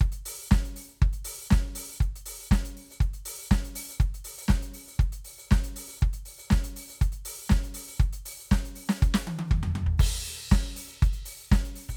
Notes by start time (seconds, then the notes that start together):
0.01 kick, closed hi-hat
0.12 closed hi-hat
0.26 open hi-hat
0.40 open hi-hat
0.48 snare, hi-hat pedal
0.52 kick
0.65 closed hi-hat
0.76 open hi-hat
0.89 open hi-hat
0.97 hi-hat pedal
1.02 kick, closed hi-hat
1.13 closed hi-hat
1.25 open hi-hat
1.39 open hi-hat
1.47 snare, hi-hat pedal
1.53 kick
1.65 closed hi-hat
1.76 open hi-hat
1.90 open hi-hat
1.97 hi-hat pedal
2.01 kick, closed hi-hat
2.16 closed hi-hat
2.26 open hi-hat
2.40 open hi-hat
2.47 hi-hat pedal
2.51 kick, snare
2.65 closed hi-hat
2.70 kick
2.77 open hi-hat
2.91 open hi-hat
2.96 hi-hat pedal
3.01 kick, closed hi-hat
3.14 closed hi-hat
3.26 open hi-hat
3.39 open hi-hat
3.47 hi-hat pedal
3.51 kick, snare
3.65 closed hi-hat
3.76 open hi-hat
3.89 open hi-hat
3.95 hi-hat pedal
4.00 kick, closed hi-hat
4.14 closed hi-hat
4.25 open hi-hat
4.38 open hi-hat
4.45 snare, hi-hat pedal
4.50 kick
4.63 closed hi-hat
4.74 open hi-hat
4.88 open hi-hat
4.96 kick, hi-hat pedal
5.01 closed hi-hat
5.13 closed hi-hat
5.25 open hi-hat
5.38 open hi-hat
5.48 kick, snare, hi-hat pedal
5.64 closed hi-hat
5.76 open hi-hat
5.88 open hi-hat
5.98 closed hi-hat, hi-hat pedal
6.03 kick
6.13 closed hi-hat
6.26 open hi-hat
6.38 open hi-hat
6.49 kick, snare, hi-hat pedal
6.64 closed hi-hat
6.76 open hi-hat
6.89 open hi-hat
6.99 closed hi-hat, kick, hi-hat pedal
7.12 closed hi-hat
7.25 open hi-hat
7.38 open hi-hat
7.47 snare, hi-hat pedal
7.52 kick
7.64 closed hi-hat
7.74 open hi-hat
7.87 open hi-hat
7.99 kick, closed hi-hat, hi-hat pedal
8.13 closed hi-hat
8.26 open hi-hat
8.39 open hi-hat
8.50 kick, snare, hi-hat pedal
8.65 closed hi-hat
8.76 open hi-hat
8.89 snare
8.99 closed hi-hat, kick, hi-hat pedal
9.14 snare
9.27 high tom
9.39 high tom
9.48 kick, floor tom, hi-hat pedal
9.63 floor tom
9.76 floor tom
9.87 kick
9.98 kick, hi-hat pedal, crash
10.24 open hi-hat
10.48 kick, snare, hi-hat pedal
10.70 closed hi-hat
10.76 open hi-hat, kick
10.88 open hi-hat
10.97 hi-hat pedal
11.03 closed hi-hat, kick
11.13 closed hi-hat
11.26 open hi-hat
11.38 open hi-hat
11.49 kick, snare, hi-hat pedal
11.65 closed hi-hat
11.76 open hi-hat
11.89 open hi-hat, kick